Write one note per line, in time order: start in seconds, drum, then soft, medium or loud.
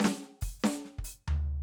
0.00 snare medium
0.04 snare loud
0.22 snare soft
0.41 open hi-hat medium
0.41 kick medium
0.59 hi-hat pedal soft
0.64 snare loud
0.84 snare soft
0.98 kick soft
1.04 open hi-hat loud
1.27 floor tom loud